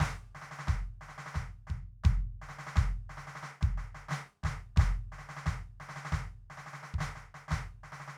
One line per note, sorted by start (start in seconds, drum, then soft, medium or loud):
0.04 snare loud
0.36 snare soft
0.43 snare soft
0.52 snare soft
0.60 snare soft
0.68 kick medium
0.68 snare medium
1.02 snare soft
1.10 snare soft
1.19 snare soft
1.27 snare soft
1.35 kick soft
1.35 snare medium
1.68 kick soft
1.68 snare soft
2.05 kick loud
2.05 snare soft
2.43 snare soft
2.50 snare soft
2.60 snare soft
2.68 snare soft
2.77 kick medium
2.77 snare medium
3.11 snare soft
3.18 snare soft
3.28 snare soft
3.36 snare soft
3.44 snare medium
3.62 kick medium
3.62 snare soft
3.79 snare soft
3.96 snare soft
4.10 snare soft
4.12 snare medium
4.44 kick medium
4.44 snare soft
4.46 snare medium
4.77 kick loud
4.77 snare soft
4.80 snare medium
5.13 snare soft
5.20 snare soft
5.30 snare soft
5.38 snare soft
5.47 kick medium
5.47 snare medium
5.81 snare soft
5.90 snare soft
5.97 snare soft
6.06 snare medium
6.13 kick medium
6.13 snare medium
6.51 snare soft
6.58 snare soft
6.67 snare soft
6.75 snare soft
6.84 snare soft
6.95 kick medium
6.99 snare soft
7.02 snare medium
7.17 snare soft
7.35 snare soft
7.49 snare soft
7.52 kick medium
7.52 snare medium
7.85 snare soft
7.93 snare soft
8.01 snare soft
8.09 snare soft